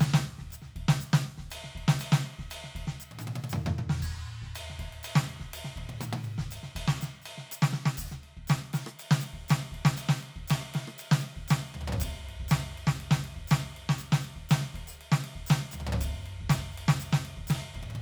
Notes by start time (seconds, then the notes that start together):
0.01 snare, percussion
0.14 snare
0.19 cross-stick
0.25 snare
0.39 kick, snare
0.51 ride bell, percussion
0.63 snare
0.77 kick, ride
0.82 kick
0.89 snare
1.01 ride, percussion
1.14 snare
1.38 kick, snare
1.51 ride bell, percussion
1.65 snare
1.76 kick, ride
1.89 snare
2.00 ride bell, percussion
2.13 snare
2.19 snare
2.39 kick, snare
2.51 ride bell, percussion
2.65 snare
2.76 kick, ride
2.84 kick, snare
3.01 percussion
3.12 high tom
3.19 high tom, percussion
3.28 high tom
3.36 high tom
3.45 high tom
3.50 mid tom, percussion
3.65 mid tom, percussion
3.79 mid tom
3.90 snare
4.00 kick, snare, percussion, crash
4.08 kick
4.42 kick, snare
4.56 ride bell, percussion
4.71 snare
4.80 kick, snare, ride
4.85 kick, snare
4.93 ride
5.04 ride bell, percussion
5.16 snare
5.23 snare
5.30 ride
5.40 kick, snare
5.54 ride, percussion
5.65 snare
5.77 kick, high tom
5.90 high tom
6.01 high tom, percussion
6.13 high tom
6.24 high tom, percussion
6.39 kick, snare
6.49 kick, ride bell, percussion
6.64 snare
6.76 kick, ride bell
6.82 kick
6.88 snare
7.02 snare, percussion
7.22 ride bell, percussion
7.38 snare
7.52 ride bell, percussion
7.63 snare
7.73 snare
7.86 snare
7.98 kick, ride bell, percussion
8.04 kick
8.12 snare, percussion
8.24 ride bell
8.38 kick
8.48 snare, ride bell, percussion
8.74 snare, ride, percussion
8.87 cross-stick
9.00 ride, percussion
9.12 snare
9.21 ride, percussion
9.34 kick
9.49 snare, ride, percussion
9.62 snare
9.72 kick, ride
9.78 kick
9.86 snare
9.98 ride bell, percussion
10.09 snare
10.19 percussion
10.23 ride
10.37 kick
10.48 snare, ride, percussion
10.75 snare, ride
10.88 cross-stick
10.99 ride, percussion
11.12 snare
11.20 percussion
11.24 ride
11.37 kick
11.49 snare, ride, percussion
11.67 percussion
11.75 floor tom
11.82 floor tom
11.88 floor tom
11.93 floor tom
12.01 kick, ride, percussion
12.07 kick
12.29 ride
12.41 kick
12.49 snare, ride, percussion
12.78 ride
12.88 snare
12.95 percussion
13.01 ride
13.12 snare
13.20 snare
13.25 ride
13.37 kick
13.44 kick
13.48 snare, ride, percussion
13.70 percussion
13.77 ride
13.90 snare
13.99 ride, percussion
14.13 snare
14.21 ride, percussion
14.37 kick
14.50 snare, ride, percussion
14.62 snare
14.75 kick, ride
14.81 kick
14.88 percussion
14.93 percussion
15.02 ride
15.12 snare
15.25 ride
15.36 kick
15.41 kick
15.47 snare, ride, percussion
15.72 floor tom, percussion
15.81 floor tom
15.88 floor tom
15.93 floor tom
16.01 kick, ride, percussion
16.07 kick
16.22 percussion
16.27 ride
16.41 kick
16.50 snare, ride, percussion
16.55 snare
16.73 percussion
16.78 ride
16.89 snare
17.01 ride, percussion
17.13 snare
17.26 ride
17.38 kick
17.46 kick, percussion
17.51 snare, ride
17.75 kick, high tom
17.82 kick, high tom
17.91 high tom
17.96 high tom